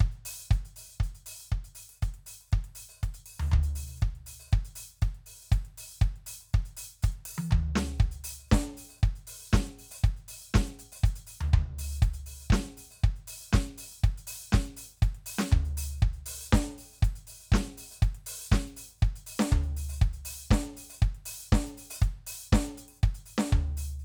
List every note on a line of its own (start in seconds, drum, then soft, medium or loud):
0.01 kick loud
0.01 closed hi-hat soft
0.12 closed hi-hat soft
0.26 open hi-hat loud
0.40 open hi-hat soft
0.46 hi-hat pedal soft
0.52 closed hi-hat soft
0.52 kick loud
0.66 closed hi-hat soft
0.77 open hi-hat medium
0.90 open hi-hat soft
0.95 hi-hat pedal soft
1.01 closed hi-hat soft
1.01 kick loud
1.16 closed hi-hat soft
1.27 open hi-hat loud
1.41 open hi-hat soft
1.48 hi-hat pedal soft
1.52 kick medium
1.52 closed hi-hat soft
1.65 closed hi-hat soft
1.76 open hi-hat medium
1.90 open hi-hat medium
1.97 hi-hat pedal soft
2.03 closed hi-hat medium
2.03 kick medium
2.15 closed hi-hat soft
2.27 open hi-hat medium
2.42 open hi-hat soft
2.48 hi-hat pedal soft
2.53 kick loud
2.53 closed hi-hat soft
2.65 closed hi-hat soft
2.76 open hi-hat medium
2.89 open hi-hat medium
2.98 hi-hat pedal soft
3.04 kick medium
3.04 closed hi-hat medium
3.15 closed hi-hat medium
3.27 open hi-hat medium
3.40 floor tom loud
3.50 kick loud
3.50 floor tom loud
3.50 hi-hat pedal soft
3.64 closed hi-hat medium
3.76 open hi-hat loud
3.88 open hi-hat medium
3.98 hi-hat pedal soft
4.02 kick loud
4.02 closed hi-hat soft
4.16 closed hi-hat soft
4.27 open hi-hat medium
4.40 open hi-hat medium
4.48 hi-hat pedal soft
4.53 kick loud
4.53 closed hi-hat soft
4.66 closed hi-hat medium
4.76 open hi-hat loud
4.91 open hi-hat soft
4.97 hi-hat pedal soft
5.03 kick loud
5.03 closed hi-hat medium
5.15 closed hi-hat soft
5.27 open hi-hat medium
5.43 open hi-hat soft
5.48 hi-hat pedal soft
5.53 kick loud
5.53 closed hi-hat medium
5.66 closed hi-hat soft
5.78 open hi-hat loud
5.92 open hi-hat soft
5.98 kick loud
5.98 hi-hat pedal soft
6.03 closed hi-hat soft
6.17 closed hi-hat soft
6.27 open hi-hat loud
6.41 open hi-hat soft
6.50 hi-hat pedal soft
6.54 kick loud
6.54 closed hi-hat soft
6.66 closed hi-hat soft
6.77 open hi-hat loud
6.90 open hi-hat soft
6.99 closed hi-hat medium
6.99 hi-hat pedal soft
7.04 kick loud
7.13 closed hi-hat soft
7.26 open hi-hat loud
7.39 high tom loud
7.47 hi-hat pedal soft
7.52 kick loud
7.52 floor tom loud
7.76 snare loud
7.99 kick loud
7.99 hi-hat pedal soft
8.04 closed hi-hat soft
8.12 closed hi-hat soft
8.25 open hi-hat loud
8.40 open hi-hat soft
8.49 kick loud
8.49 snare loud
8.49 hi-hat pedal soft
8.78 open hi-hat medium
8.90 open hi-hat medium
8.99 hi-hat pedal soft
9.04 kick loud
9.04 closed hi-hat soft
9.16 closed hi-hat soft
9.28 open hi-hat medium
9.41 open hi-hat soft
9.51 kick loud
9.51 snare loud
9.51 hi-hat pedal soft
9.68 closed hi-hat soft
9.79 open hi-hat medium
9.92 open hi-hat loud
9.99 hi-hat pedal soft
10.04 kick loud
10.04 closed hi-hat soft
10.17 closed hi-hat soft
10.29 open hi-hat loud
10.42 open hi-hat soft
10.50 hi-hat pedal soft
10.55 kick loud
10.55 snare loud
10.68 closed hi-hat soft
10.80 open hi-hat medium
10.93 open hi-hat medium
10.99 hi-hat pedal soft
11.04 closed hi-hat medium
11.04 kick loud
11.16 closed hi-hat medium
11.28 open hi-hat medium
11.41 floor tom loud
11.48 hi-hat pedal soft
11.54 kick loud
11.54 floor tom loud
11.79 open hi-hat loud
11.91 open hi-hat medium
11.97 hi-hat pedal soft
12.03 kick loud
12.03 closed hi-hat medium
12.14 closed hi-hat medium
12.27 open hi-hat medium
12.41 open hi-hat soft
12.46 hi-hat pedal soft
12.51 kick loud
12.51 snare loud
12.66 closed hi-hat soft
12.78 open hi-hat medium
12.91 open hi-hat medium
12.99 hi-hat pedal soft
13.04 kick loud
13.04 closed hi-hat soft
13.17 closed hi-hat soft
13.28 open hi-hat loud
13.41 open hi-hat medium
13.50 snare loud
13.50 hi-hat pedal soft
13.55 kick loud
13.67 closed hi-hat soft
13.79 open hi-hat loud
13.93 open hi-hat soft
13.99 hi-hat pedal soft
14.04 kick loud
14.04 closed hi-hat medium
14.18 closed hi-hat soft
14.28 open hi-hat loud
14.41 open hi-hat soft
14.50 snare loud
14.50 hi-hat pedal soft
14.54 kick loud
14.65 closed hi-hat soft
14.77 open hi-hat loud
14.92 open hi-hat soft
14.97 hi-hat pedal soft
15.03 kick loud
15.03 closed hi-hat medium
15.15 closed hi-hat soft
15.27 open hi-hat loud
15.39 snare loud
15.50 kick loud
15.50 floor tom loud
15.50 hi-hat pedal soft
15.66 closed hi-hat soft
15.78 open hi-hat loud
15.91 open hi-hat soft
15.98 hi-hat pedal soft
16.03 kick loud
16.03 closed hi-hat soft
16.14 closed hi-hat soft
16.27 open hi-hat loud
16.41 open hi-hat medium
16.47 hi-hat pedal soft
16.53 kick loud
16.53 snare loud
16.79 open hi-hat medium
16.93 open hi-hat soft
16.99 hi-hat pedal soft
17.03 kick loud
17.03 closed hi-hat medium
17.16 closed hi-hat soft
17.28 open hi-hat medium
17.41 open hi-hat soft
17.53 kick loud
17.53 snare loud
17.66 closed hi-hat soft
17.78 open hi-hat medium
17.92 open hi-hat medium
17.97 hi-hat pedal soft
18.03 kick loud
18.03 closed hi-hat medium
18.15 closed hi-hat soft
18.27 open hi-hat loud
18.42 open hi-hat soft
18.48 hi-hat pedal soft
18.52 kick loud
18.52 snare loud
18.67 closed hi-hat soft
18.77 open hi-hat medium
18.91 open hi-hat soft
18.99 kick loud
18.99 hi-hat pedal soft
19.05 closed hi-hat soft
19.16 closed hi-hat soft
19.27 open hi-hat loud
19.40 snare loud
19.48 hi-hat pedal soft
19.53 kick loud
19.53 floor tom loud
19.64 closed hi-hat soft
19.77 open hi-hat medium
19.90 open hi-hat medium
19.97 hi-hat pedal soft
20.02 kick loud
20.02 closed hi-hat soft
20.14 closed hi-hat soft
20.26 open hi-hat loud
20.38 open hi-hat soft
20.47 hi-hat pedal soft
20.51 kick loud
20.51 snare loud
20.65 closed hi-hat soft
20.77 open hi-hat medium
20.90 open hi-hat medium
20.96 hi-hat pedal soft
21.03 kick loud
21.03 closed hi-hat soft
21.15 closed hi-hat soft
21.26 open hi-hat loud
21.41 open hi-hat medium
21.48 hi-hat pedal soft
21.53 kick loud
21.53 snare loud
21.67 closed hi-hat soft
21.78 open hi-hat medium
21.91 open hi-hat loud
21.97 hi-hat pedal soft
22.02 kick loud
22.02 closed hi-hat medium
22.27 open hi-hat loud
22.41 open hi-hat soft
22.48 hi-hat pedal soft
22.53 kick loud
22.53 snare loud
22.66 closed hi-hat soft
22.78 open hi-hat medium
22.89 open hi-hat soft
22.98 hi-hat pedal soft
23.04 kick loud
23.04 closed hi-hat soft
23.15 closed hi-hat medium
23.27 open hi-hat medium
23.39 snare loud
23.46 hi-hat pedal soft
23.53 kick loud
23.53 floor tom loud
23.78 open hi-hat loud
24.00 hi-hat pedal soft